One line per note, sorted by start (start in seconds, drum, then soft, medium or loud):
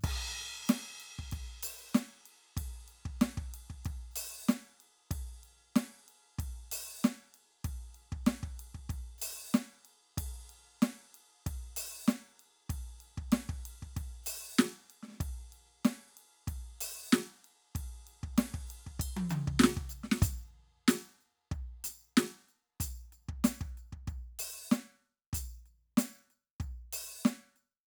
0.01 kick loud
0.01 percussion soft
0.01 ride loud
0.31 ride soft
0.67 snare loud
0.67 ride loud
0.67 percussion soft
1.00 ride medium
1.19 kick medium
1.32 kick medium
1.32 ride medium
1.63 ride medium
1.63 percussion loud
1.95 snare loud
1.95 ride medium
1.95 percussion medium
2.26 ride medium
2.57 kick medium
2.57 ride loud
2.88 ride soft
3.06 kick medium
3.21 snare loud
3.21 ride medium
3.38 kick medium
3.54 ride medium
3.70 kick soft
3.85 kick medium
3.85 ride medium
4.11 percussion soft
4.16 ride loud
4.16 percussion loud
4.49 snare loud
4.49 ride medium
4.49 percussion medium
4.80 ride soft
5.11 kick medium
5.11 ride loud
5.44 ride soft
5.76 snare loud
5.76 ride loud
6.08 ride soft
6.39 kick medium
6.39 ride medium
6.72 ride medium
6.72 percussion loud
7.04 snare loud
7.04 ride soft
7.04 percussion medium
7.34 ride soft
7.65 kick medium
7.65 ride medium
7.95 ride soft
8.12 kick medium
8.27 snare loud
8.27 ride medium
8.43 kick medium
8.60 ride medium
8.75 kick soft
8.90 kick medium
8.90 ride medium
9.18 percussion soft
9.22 ride loud
9.22 percussion loud
9.54 snare loud
9.54 ride medium
9.54 percussion medium
9.85 ride soft
10.18 kick medium
10.18 ride loud
10.50 ride soft
10.82 snare loud
10.82 ride medium
11.15 ride medium
11.47 kick medium
11.47 ride medium
11.77 ride medium
11.77 percussion loud
12.08 snare loud
12.08 ride medium
12.08 percussion medium
12.40 ride soft
12.70 kick medium
12.70 ride medium
13.01 ride soft
13.18 kick medium
13.32 snare loud
13.32 ride loud
13.49 kick medium
13.66 ride medium
13.83 kick soft
13.97 kick medium
13.97 ride medium
14.24 percussion soft
14.26 ride loud
14.26 percussion loud
14.59 snare loud
14.59 ride soft
14.59 percussion medium
14.90 ride soft
15.03 snare soft
15.08 snare soft
15.11 snare soft
15.14 snare soft
15.21 kick medium
15.21 ride medium
15.53 ride soft
15.85 snare loud
15.85 ride medium
16.17 ride medium
16.48 kick medium
16.48 ride medium
16.81 ride medium
16.81 percussion loud
17.13 snare loud
17.13 ride medium
17.13 percussion medium
17.45 ride soft
17.75 kick medium
17.75 ride medium
18.07 ride soft
18.23 kick medium
18.37 snare loud
18.37 ride loud
18.37 percussion soft
18.54 kick medium
18.67 ride medium
18.67 percussion soft
18.87 kick soft
19.00 kick medium
19.00 ride bell loud
19.17 high tom loud
19.30 mid tom loud
19.30 percussion medium
19.48 kick medium
19.60 snare loud
19.60 percussion medium
19.64 snare loud
19.77 kick medium
19.90 percussion medium
20.04 snare medium
20.12 snare loud
20.22 kick loud
20.22 percussion loud
20.88 snare loud
20.88 percussion loud
21.21 percussion soft
21.52 kick medium
21.52 percussion soft
21.84 percussion loud
22.17 snare loud
22.17 percussion medium
22.49 percussion soft
22.80 kick medium
22.80 percussion loud
23.13 percussion soft
23.29 kick medium
23.44 snare loud
23.44 percussion loud
23.61 kick medium
23.78 percussion soft
23.93 kick soft
24.08 kick medium
24.08 percussion soft
24.39 percussion loud
24.72 snare loud
24.72 percussion medium
25.33 kick medium
25.33 percussion loud
25.66 percussion soft
25.98 snare loud
25.98 percussion loud
26.30 percussion soft
26.60 kick medium
26.60 percussion soft
26.93 percussion loud
27.25 snare loud
27.25 percussion medium
27.56 percussion soft